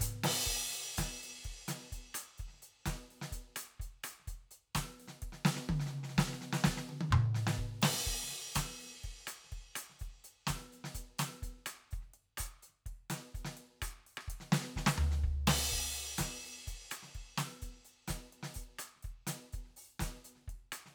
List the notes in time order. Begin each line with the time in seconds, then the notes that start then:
0.01 closed hi-hat, kick
0.24 snare, crash
0.47 kick, closed hi-hat
0.52 snare
0.71 closed hi-hat, snare
0.75 snare
0.98 closed hi-hat, kick, snare
1.03 kick
1.23 closed hi-hat
1.30 snare
1.35 snare
1.38 snare
1.45 kick, closed hi-hat
1.68 closed hi-hat, snare
1.82 snare
1.92 closed hi-hat, kick
2.15 closed hi-hat, cross-stick
2.38 closed hi-hat, kick
2.48 snare
2.54 snare
2.62 closed hi-hat
2.86 closed hi-hat, kick, snare
3.11 open hi-hat
3.22 snare
3.32 closed hi-hat, kick
3.56 open hi-hat, cross-stick
3.80 closed hi-hat, kick
4.04 open hi-hat, cross-stick
4.20 snare
4.28 closed hi-hat, kick, snare
4.32 snare
4.35 snare
4.37 snare
4.51 closed hi-hat
4.75 open hi-hat, kick, snare
5.00 open hi-hat
5.08 snare
5.22 kick, closed hi-hat
5.33 snare
5.45 snare
5.56 snare
5.69 kick, high tom
5.80 snare
5.86 snare
5.91 high tom
5.98 high tom
6.03 snare
6.09 snare
6.14 kick, snare
6.18 snare
6.28 snare
6.33 snare
6.41 snare
6.53 snare
6.64 kick, snare, hi-hat pedal
6.77 snare
6.89 high tom
7.01 high tom
7.11 kick, mid tom
7.35 snare
7.47 snare
7.56 kick, hi-hat pedal
7.82 snare, crash
7.95 snare
8.06 closed hi-hat, kick
8.22 snare
8.27 snare
8.30 snare, closed hi-hat
8.55 closed hi-hat, kick, snare
8.81 open hi-hat
9.04 kick, closed hi-hat
9.27 closed hi-hat, cross-stick
9.44 snare
9.52 kick, closed hi-hat
9.76 open hi-hat, cross-stick
9.90 snare
9.99 open hi-hat, kick, snare
10.07 snare
10.24 closed hi-hat
10.47 closed hi-hat, kick, snare
10.58 snare
10.73 open hi-hat
10.84 snare
10.95 closed hi-hat, kick
11.19 open hi-hat, snare
11.43 closed hi-hat, kick
11.66 closed hi-hat, cross-stick
11.91 open hi-hat, kick
12.02 snare
12.14 open hi-hat
12.38 open hi-hat, kick, cross-stick
12.63 open hi-hat
12.68 snare
12.86 kick, closed hi-hat
13.10 open hi-hat, snare
13.35 open hi-hat, kick
13.45 snare
13.57 open hi-hat
13.82 open hi-hat, kick, cross-stick
14.07 open hi-hat
14.17 cross-stick
14.28 kick, closed hi-hat
14.40 snare
14.52 snare
14.63 snare
14.76 kick, snare
14.87 snare
14.98 floor tom
15.11 snare
15.24 kick
15.48 snare, crash
15.73 kick
15.95 closed hi-hat
16.18 closed hi-hat, kick, snare
16.45 open hi-hat
16.68 closed hi-hat, kick
16.91 open hi-hat, cross-stick
17.03 snare
17.15 kick, closed hi-hat
17.38 open hi-hat, snare
17.62 closed hi-hat, kick, snare
17.85 open hi-hat
18.08 open hi-hat, kick, snare
18.33 closed hi-hat
18.43 snare
18.54 open hi-hat, kick
18.79 open hi-hat, cross-stick
18.96 snare
19.03 kick, open hi-hat
19.27 closed hi-hat, snare
19.53 closed hi-hat, kick
19.65 snare
19.69 snare
19.77 open hi-hat
20.00 open hi-hat, kick, snare
20.15 snare
20.25 open hi-hat
20.36 snare
20.40 snare
20.48 kick, closed hi-hat
20.72 open hi-hat, cross-stick
20.86 snare